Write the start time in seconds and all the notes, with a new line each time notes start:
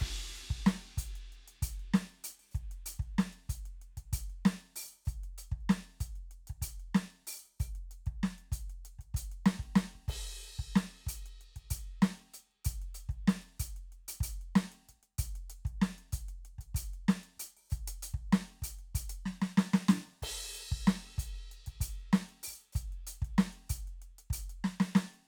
0.01 kick, ride
0.37 closed hi-hat
0.51 kick
0.67 snare
0.83 closed hi-hat
0.98 closed hi-hat, kick
1.16 closed hi-hat
1.33 closed hi-hat
1.49 closed hi-hat
1.63 closed hi-hat, kick
1.80 closed hi-hat
1.95 snare
2.10 closed hi-hat
2.25 closed hi-hat
2.40 open hi-hat
2.52 kick, hi-hat pedal
2.57 closed hi-hat
2.72 closed hi-hat
2.87 closed hi-hat
3.00 kick, closed hi-hat
3.19 snare
3.34 closed hi-hat
3.50 closed hi-hat, kick
3.66 closed hi-hat
3.83 closed hi-hat
3.98 kick, closed hi-hat
4.14 closed hi-hat, kick
4.31 closed hi-hat
4.46 snare
4.61 closed hi-hat
4.77 open hi-hat
4.94 open hi-hat
5.06 closed hi-hat, kick, hi-hat pedal
5.24 closed hi-hat
5.39 closed hi-hat
5.53 kick
5.62 closed hi-hat
5.70 snare
5.85 closed hi-hat
6.01 closed hi-hat, kick
6.17 closed hi-hat
6.32 closed hi-hat
6.48 kick, closed hi-hat
6.63 closed hi-hat, kick
6.81 closed hi-hat
6.96 snare
7.11 closed hi-hat
7.28 open hi-hat
7.46 open hi-hat
7.61 open hi-hat, kick, hi-hat pedal
7.76 closed hi-hat
7.92 closed hi-hat
8.07 kick, closed hi-hat
8.24 snare
8.39 closed hi-hat
8.53 closed hi-hat, kick
8.71 closed hi-hat
8.86 closed hi-hat
9.00 kick, closed hi-hat
9.15 closed hi-hat, kick
9.33 closed hi-hat
9.47 snare
9.60 kick, closed hi-hat
9.77 snare
9.95 kick
10.09 kick, hi-hat pedal, crash
10.22 closed hi-hat
10.45 closed hi-hat
10.60 kick, closed hi-hat
10.77 snare
10.94 closed hi-hat
11.08 closed hi-hat, kick
11.15 kick
11.27 closed hi-hat
11.42 closed hi-hat
11.57 kick, closed hi-hat
11.71 closed hi-hat, kick
11.94 closed hi-hat
12.03 snare
12.19 closed hi-hat
12.35 closed hi-hat
12.52 closed hi-hat
12.66 closed hi-hat, kick
12.83 closed hi-hat
12.95 closed hi-hat
13.10 kick, closed hi-hat
13.29 snare
13.43 closed hi-hat
13.61 closed hi-hat, kick
13.77 closed hi-hat
13.93 closed hi-hat
14.09 closed hi-hat
14.21 closed hi-hat, kick
14.42 closed hi-hat
14.56 snare
14.73 closed hi-hat
14.90 kick, closed hi-hat
15.04 closed hi-hat
15.19 closed hi-hat, kick
15.36 closed hi-hat
15.51 closed hi-hat
15.66 kick, closed hi-hat
15.83 snare
15.99 closed hi-hat
16.13 closed hi-hat, kick
16.29 closed hi-hat
16.46 closed hi-hat
16.59 kick, closed hi-hat
16.75 closed hi-hat, kick
16.94 closed hi-hat
17.09 snare
17.24 closed hi-hat
17.38 closed hi-hat, kick
17.58 open hi-hat
17.71 closed hi-hat, kick, hi-hat pedal
17.89 closed hi-hat
18.03 closed hi-hat
18.15 kick
18.34 snare
18.49 closed hi-hat
18.63 closed hi-hat, kick
18.80 closed hi-hat
18.96 closed hi-hat, kick
19.10 closed hi-hat
19.27 snare
19.43 snare
19.58 snare
19.74 snare
19.89 snare
20.23 kick, crash
20.37 closed hi-hat
20.55 closed hi-hat
20.73 kick, closed hi-hat
20.88 snare
21.05 closed hi-hat
21.19 closed hi-hat, kick
21.37 closed hi-hat
21.52 closed hi-hat
21.67 kick, closed hi-hat
21.81 closed hi-hat, kick
22.00 closed hi-hat
22.14 snare
22.30 closed hi-hat
22.44 open hi-hat
22.48 kick
22.62 open hi-hat
22.73 closed hi-hat, kick, hi-hat pedal
22.93 closed hi-hat
23.08 closed hi-hat
23.23 kick, closed hi-hat
23.39 snare
23.54 closed hi-hat
23.70 closed hi-hat, kick
23.88 closed hi-hat
24.03 closed hi-hat
24.19 closed hi-hat
24.31 closed hi-hat, kick
24.50 closed hi-hat
24.65 snare
24.81 snare
24.96 snare
25.14 closed hi-hat